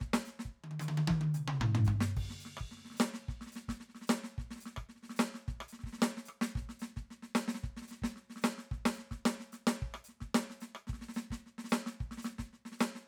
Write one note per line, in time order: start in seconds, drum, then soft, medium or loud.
0.01 kick soft
0.01 snare soft
0.08 kick soft
0.14 snare loud
0.26 snare soft
0.26 hi-hat pedal soft
0.40 snare medium
0.46 kick soft
0.64 high tom medium
0.71 high tom medium
0.80 hi-hat pedal medium
0.80 high tom medium
0.89 high tom medium
0.98 high tom medium
1.11 kick soft
1.17 kick soft
1.21 high tom loud
1.35 hi-hat pedal medium
1.35 mid tom medium
1.48 mid tom loud
1.61 kick soft
1.61 floor tom loud
1.75 floor tom loud
1.85 kick soft
1.85 hi-hat pedal soft
1.85 floor tom medium
1.94 kick soft
2.01 snare medium
2.17 kick medium
2.17 ride medium
2.31 kick soft
2.31 snare soft
2.41 hi-hat pedal soft
2.46 snare soft
2.57 kick soft
2.57 cross-stick medium
2.72 snare soft
2.78 snare soft
2.85 snare soft
2.91 snare soft
2.95 snare soft
2.95 hi-hat pedal medium
3.00 snare loud
3.14 snare soft
3.29 kick soft
3.29 snare soft
3.41 snare soft
3.47 snare soft
3.52 snare soft
3.52 hi-hat pedal soft
3.56 snare soft
3.69 kick soft
3.69 snare medium
3.81 snare soft
3.90 snare soft
3.95 snare soft
4.02 snare soft
4.08 snare loud
4.08 hi-hat pedal soft
4.24 snare soft
4.39 kick soft
4.39 snare soft
4.44 kick soft
4.51 snare soft
4.56 snare soft
4.61 hi-hat pedal soft
4.66 snare soft
4.77 kick soft
4.77 cross-stick medium
4.89 snare soft
4.96 snare soft
5.01 snare soft
5.03 snare soft
5.10 snare soft
5.15 snare soft
5.15 hi-hat pedal medium
5.20 snare loud
5.35 snare soft
5.48 kick soft
5.48 snare soft
5.55 kick soft
5.61 cross-stick medium
5.69 hi-hat pedal soft
5.73 snare soft
5.80 snare soft
5.84 kick soft
5.84 snare soft
5.93 snare soft
5.99 snare soft
6.02 snare loud
6.18 snare soft
6.26 cross-stick medium
6.26 hi-hat pedal soft
6.42 snare medium
6.56 kick soft
6.56 snare soft
6.63 kick soft
6.70 snare soft
6.80 snare medium
6.80 hi-hat pedal soft
6.97 kick soft
6.97 snare soft
7.11 snare soft
7.23 snare soft
7.36 snare loud
7.36 hi-hat pedal soft
7.48 snare medium
7.55 snare soft
7.64 kick soft
7.64 snare soft
7.70 kick soft
7.77 snare soft
7.82 snare soft
7.88 snare soft
7.88 hi-hat pedal soft
7.91 snare soft
8.03 kick soft
8.03 snare medium
8.16 snare soft
8.23 snare soft
8.29 snare soft
8.30 snare soft
8.36 snare soft
8.42 snare soft
8.42 hi-hat pedal soft
8.45 snare loud
8.59 snare soft
8.72 kick soft
8.72 snare soft
8.79 kick soft
8.86 snare loud
8.95 hi-hat pedal soft
8.99 snare soft
9.12 kick soft
9.12 snare soft
9.26 snare loud
9.40 snare soft
9.53 snare soft
9.53 hi-hat pedal soft
9.67 snare loud
9.82 kick soft
9.82 snare soft
9.89 kick soft
9.95 cross-stick medium
10.05 hi-hat pedal medium
10.09 snare soft
10.21 kick soft
10.21 snare soft
10.35 snare loud
10.50 snare soft
10.61 snare soft
10.61 hi-hat pedal soft
10.75 cross-stick medium
10.88 kick soft
10.88 snare soft
10.94 kick soft
10.94 snare soft
10.99 snare soft
11.02 snare soft
11.14 snare medium
11.14 hi-hat pedal soft
11.31 kick soft
11.31 snare medium
11.47 snare soft
11.59 snare soft
11.65 snare soft
11.70 snare loud
11.70 hi-hat pedal medium
11.87 snare medium
12.01 kick soft
12.01 snare soft
12.07 kick soft
12.12 snare soft
12.18 snare soft
12.23 snare medium
12.23 hi-hat pedal soft
12.39 kick soft
12.39 snare soft
12.54 snare soft
12.66 snare soft
12.72 snare soft
12.78 snare soft
12.78 hi-hat pedal soft
12.81 snare loud
12.96 snare soft